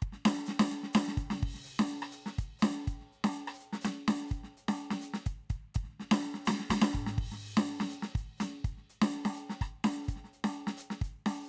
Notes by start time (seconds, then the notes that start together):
0.02 kick, closed hi-hat
0.12 snare
0.25 snare
0.38 snare
0.46 snare, hi-hat pedal
0.59 snare
0.70 snare, hi-hat pedal
0.83 snare
0.93 snare, hi-hat pedal
1.08 snare
1.17 kick, hi-hat pedal, high tom
1.30 snare
1.43 kick, crash
1.49 kick
1.54 snare
1.64 closed hi-hat, hi-hat pedal
1.79 snare
1.86 hi-hat pedal
2.02 cross-stick
2.11 hi-hat pedal
2.16 closed hi-hat
2.26 snare
2.38 closed hi-hat, kick
2.59 closed hi-hat, snare, hi-hat pedal
2.70 snare
2.87 closed hi-hat, kick
3.00 snare
3.12 closed hi-hat
3.24 snare
3.37 closed hi-hat
3.47 cross-stick
3.54 hi-hat pedal
3.60 closed hi-hat
3.73 snare
3.81 closed hi-hat, snare, hi-hat pedal
4.08 closed hi-hat, snare
4.27 kick, hi-hat pedal
4.32 closed hi-hat
4.43 snare
4.57 closed hi-hat
4.68 snare
4.74 hi-hat pedal
4.80 closed hi-hat
4.91 snare
5.01 closed hi-hat, hi-hat pedal
5.14 snare
5.26 closed hi-hat, kick
5.50 closed hi-hat, kick
5.55 kick, snare
5.74 closed hi-hat, kick
5.82 kick, snare
5.85 kick
5.89 snare
6.00 snare
6.11 snare, hi-hat pedal
6.23 snare
6.34 snare
6.45 snare, hi-hat pedal
6.59 snare
6.70 kick, snare, hi-hat pedal
6.82 snare
6.94 kick, hi-hat pedal, mid tom
7.07 snare
7.11 hi-hat pedal
7.18 kick, crash
7.24 kick
7.26 kick
7.32 snare
7.44 closed hi-hat
7.57 snare
7.69 closed hi-hat
7.80 snare
7.89 closed hi-hat, hi-hat pedal
8.02 snare
8.15 open hi-hat, kick
8.21 kick
8.38 closed hi-hat, snare, hi-hat pedal
8.64 closed hi-hat, kick
8.72 kick
8.77 snare
8.89 closed hi-hat
9.02 snare
9.14 closed hi-hat
9.25 snare
9.34 closed hi-hat, hi-hat pedal
9.50 snare
9.61 closed hi-hat, kick, cross-stick
9.84 closed hi-hat, snare
10.04 hi-hat pedal
10.08 closed hi-hat, kick
10.16 snare
10.24 snare
10.33 closed hi-hat
10.44 snare
10.57 closed hi-hat
10.67 snare
10.77 closed hi-hat, hi-hat pedal
10.90 snare
11.01 closed hi-hat, kick
11.26 open hi-hat, snare
11.44 hi-hat pedal